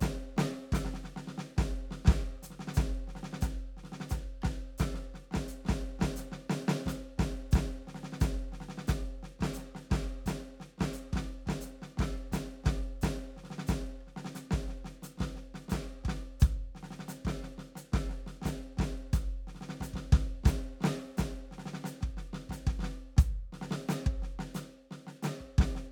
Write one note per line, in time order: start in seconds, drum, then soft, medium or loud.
0.01 kick medium
0.01 snare soft
0.01 hi-hat pedal medium
0.03 snare medium
0.37 snare soft
0.37 snare loud
0.72 kick medium
0.72 snare medium
0.72 hi-hat pedal medium
0.85 snare soft
0.94 snare soft
1.04 snare soft
1.16 snare medium
1.28 snare soft
1.38 snare medium
1.57 kick medium
1.57 snare soft
1.58 snare medium
1.91 snare medium
2.05 kick loud
2.05 snare medium
2.09 snare medium
2.43 snare soft
2.43 hi-hat pedal medium
2.51 snare soft
2.60 snare soft
2.68 snare medium
2.74 kick loud
2.74 snare medium
2.74 hi-hat pedal medium
3.08 snare soft
3.15 snare soft
3.23 snare medium
3.33 snare medium
3.41 kick medium
3.41 snare medium
3.41 hi-hat pedal medium
3.77 snare soft
3.84 snare soft
3.92 snare soft
4.00 snare medium
4.10 kick medium
4.10 snare medium
4.10 hi-hat pedal medium
4.42 kick medium
4.42 cross-stick soft
4.42 snare medium
4.78 kick medium
4.78 snare medium
4.78 hi-hat pedal medium
4.95 snare soft
5.14 snare soft
5.31 snare soft
5.34 kick medium
5.34 snare medium
5.48 hi-hat pedal medium
5.65 snare soft
5.69 kick medium
5.69 snare medium
5.99 snare soft
6.02 kick medium
6.02 snare loud
6.16 snare soft
6.16 hi-hat pedal medium
6.32 snare soft
6.50 snare medium
6.68 snare loud
6.86 kick soft
6.86 snare medium
6.86 hi-hat pedal medium
7.18 kick medium
7.18 snare soft
7.18 snare medium
7.51 kick loud
7.51 snare soft
7.51 hi-hat pedal medium
7.56 snare medium
7.87 snare soft
7.95 snare soft
8.03 snare soft
8.13 snare soft
8.21 kick loud
8.21 snare medium
8.21 hi-hat pedal medium
8.53 snare soft
8.61 snare soft
8.69 snare soft
8.78 snare medium
8.88 kick medium
8.88 snare medium
8.88 hi-hat pedal medium
9.23 snare soft
9.39 kick soft
9.39 snare soft
9.43 snare medium
9.54 snare soft
9.54 hi-hat pedal medium
9.75 snare soft
9.91 kick medium
9.91 snare soft
9.91 snare medium
10.26 kick soft
10.26 snare soft
10.26 snare medium
10.26 hi-hat pedal medium
10.60 snare soft
10.78 kick soft
10.78 snare soft
10.81 snare medium
10.94 hi-hat pedal medium
11.13 kick medium
11.13 snare soft
11.16 snare medium
11.46 kick soft
11.46 snare soft
11.49 snare medium
11.61 snare soft
11.61 hi-hat pedal medium
11.82 snare soft
11.98 kick medium
11.98 snare soft
12.00 snare medium
12.32 kick soft
12.32 snare soft
12.32 hi-hat pedal medium
12.34 snare medium
12.64 snare soft
12.66 kick medium
12.66 snare medium
13.01 kick medium
13.01 snare soft
13.01 snare loud
13.01 hi-hat pedal medium
13.37 snare soft
13.44 snare soft
13.51 snare soft
13.58 snare medium
13.67 kick medium
13.67 snare medium
13.67 hi-hat pedal medium
14.01 cross-stick soft
14.07 snare soft
14.17 snare soft
14.25 snare medium
14.35 snare soft
14.35 hi-hat pedal medium
14.51 kick medium
14.51 snare medium
14.68 snare soft
14.85 snare soft
15.03 snare soft
15.03 hi-hat pedal medium
15.18 kick medium
15.18 snare soft
15.21 snare medium
15.36 snare soft
15.54 snare soft
15.68 kick medium
15.68 snare soft
15.68 hi-hat pedal medium
15.72 snare medium
16.04 kick medium
16.04 snare soft
16.08 snare medium
16.40 kick loud
16.40 snare soft
16.40 hi-hat pedal medium
16.75 snare soft
16.83 snare soft
16.91 snare soft
16.99 snare soft
17.08 snare soft
17.08 hi-hat pedal medium
17.25 kick medium
17.25 snare medium
17.43 snare soft
17.58 snare soft
17.76 snare soft
17.76 hi-hat pedal medium
17.92 kick medium
17.92 snare soft
17.92 snare medium
18.10 snare soft
18.27 snare soft
18.42 kick medium
18.42 snare soft
18.42 hi-hat pedal medium
18.46 snare medium
18.77 kick medium
18.77 snare soft
18.80 snare medium
19.13 kick loud
19.13 snare soft
19.13 hi-hat pedal medium
19.47 snare soft
19.55 snare soft
19.61 snare soft
19.69 snare medium
19.81 kick soft
19.81 snare medium
19.81 hi-hat pedal medium
19.94 kick soft
19.94 snare medium
20.12 kick loud
20.12 snare medium
20.44 kick loud
20.44 snare soft
20.46 snare medium
20.46 hi-hat pedal medium
20.81 snare soft
20.84 snare loud
21.17 kick medium
21.17 snare soft
21.17 snare medium
21.17 hi-hat pedal medium
21.51 snare soft
21.58 snare soft
21.66 snare soft
21.74 snare medium
21.84 snare medium
21.84 hi-hat pedal medium
22.01 kick medium
22.01 snare soft
22.17 snare soft
22.33 snare medium
22.49 kick soft
22.49 snare medium
22.49 hi-hat pedal medium
22.67 kick medium
22.67 snare soft
22.79 kick soft
22.79 snare soft
22.83 snare medium
23.17 kick loud
23.17 snare soft
23.17 hi-hat pedal medium
23.53 snare soft
23.62 snare medium
23.71 snare medium
23.89 snare medium
23.89 hi-hat pedal medium
24.06 kick medium
24.22 snare soft
24.39 snare medium
24.55 snare medium
24.55 hi-hat pedal medium
24.91 snare soft
25.07 snare soft
25.23 snare medium
25.23 hi-hat pedal medium
25.41 kick soft
25.58 kick loud
25.58 snare soft
25.60 snare medium
25.75 snare soft